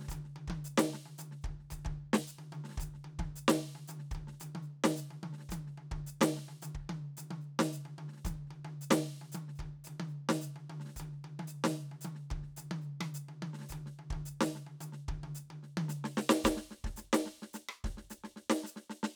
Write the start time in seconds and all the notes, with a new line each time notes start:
0.00 snare
0.04 snare
0.08 kick, snare, hi-hat pedal
0.12 high tom
0.25 snare
0.36 high tom
0.48 kick, high tom
0.65 hi-hat pedal
0.78 snare, high tom
0.94 snare
1.06 high tom
1.19 hi-hat pedal, high tom
1.32 snare
1.42 kick, hi-hat pedal
1.46 high tom
1.60 snare
1.71 kick, hi-hat pedal, high tom
1.85 kick, high tom
2.14 snare, high tom
2.28 hi-hat pedal
2.39 high tom
2.52 hi-hat pedal, high tom
2.64 snare
2.69 snare
2.71 snare
2.74 snare
2.78 kick, hi-hat pedal, high tom
2.94 snare
3.05 high tom
3.19 kick, high tom
3.36 hi-hat pedal
3.49 snare, high tom
3.66 snare
3.76 high tom
3.88 hi-hat pedal, high tom
3.99 snare
4.11 kick, hi-hat pedal, high tom
4.28 snare
4.33 snare
4.40 hi-hat pedal, high tom
4.55 high tom
4.63 hi-hat pedal
4.84 snare, high tom
4.97 hi-hat pedal
5.11 high tom
5.24 high tom
5.33 snare
5.38 snare
5.40 snare
5.49 kick, hi-hat pedal, high tom
5.67 snare
5.78 high tom
5.92 kick, high tom
6.07 hi-hat pedal
6.21 snare, high tom
6.37 snare
6.43 snare
6.49 high tom
6.62 hi-hat pedal, high tom
6.75 kick
6.90 high tom
7.17 hi-hat pedal, high tom
7.31 high tom
7.41 hi-hat pedal
7.60 snare, high tom
7.73 hi-hat pedal
7.86 high tom
7.99 high tom
8.09 snare
8.13 snare
8.17 snare
8.25 kick, hi-hat pedal, high tom
8.47 snare
8.49 snare, high tom
8.65 high tom
8.82 hi-hat pedal
8.91 snare, high tom
9.22 high tom
9.32 hi-hat pedal, high tom
9.49 snare
9.56 kick, hi-hat pedal
9.61 high tom
9.85 hi-hat pedal, high tom
10.00 high tom
10.09 hi-hat pedal
10.29 snare, high tom
10.42 hi-hat pedal
10.56 high tom
10.70 high tom
10.80 snare
10.85 snare
10.89 snare
10.94 kick, snare, hi-hat pedal
11.00 high tom
11.12 snare
11.25 high tom
11.40 high tom
11.48 hi-hat pedal
11.64 snare, high tom
11.92 high tom
12.01 hi-hat pedal, high tom
12.16 snare
12.31 kick, high tom
12.43 snare
12.57 hi-hat pedal, high tom
12.72 high tom
12.82 hi-hat pedal
13.01 cross-stick, high tom
13.15 hi-hat pedal
13.29 high tom
13.43 high tom
13.54 snare
13.58 snare
13.61 snare
13.63 snare
13.69 kick, hi-hat pedal, high tom
13.86 snare
13.99 high tom
14.11 kick, high tom
14.26 hi-hat pedal
14.41 snare, high tom
14.56 snare
14.67 high tom
14.81 hi-hat pedal, high tom
14.93 snare
15.09 kick, high tom
15.24 high tom
15.35 snare, hi-hat pedal
15.51 high tom
15.63 snare
15.78 high tom
15.89 snare, hi-hat pedal
16.05 snare
16.14 snare, hi-hat pedal
16.30 snare
16.44 kick, snare, hi-hat pedal
16.57 snare
16.71 snare
16.85 kick, snare
16.97 snare, hi-hat pedal
17.13 snare
17.26 snare
17.42 snare
17.54 snare, hi-hat pedal
17.69 cross-stick
17.85 kick, snare
17.98 snare
18.10 snare, hi-hat pedal
18.24 snare
18.37 snare
18.50 snare
18.64 snare, hi-hat pedal
18.77 snare
18.90 snare
19.04 snare